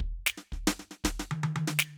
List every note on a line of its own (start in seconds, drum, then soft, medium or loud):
0.00 kick medium
0.26 snare loud
0.37 snare soft
0.52 kick soft
0.52 snare soft
0.67 snare loud
0.79 snare soft
0.91 snare soft
1.04 kick soft
1.04 snare loud
1.19 snare medium
1.31 high tom loud
1.43 high tom loud
1.56 high tom loud
1.67 snare medium
1.79 snare loud